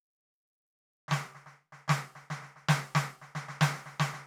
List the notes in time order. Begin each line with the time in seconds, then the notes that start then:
1.08 snare
1.11 snare
1.23 snare
1.35 snare
1.46 snare
1.61 snare
1.72 snare
1.88 snare
2.03 snare
2.15 snare
2.30 snare
2.42 snare
2.56 snare
2.69 snare
2.81 snare
2.95 snare
3.06 snare
3.22 snare
3.35 snare
3.48 snare
3.61 snare
3.73 snare
3.86 snare
4.00 snare
4.13 snare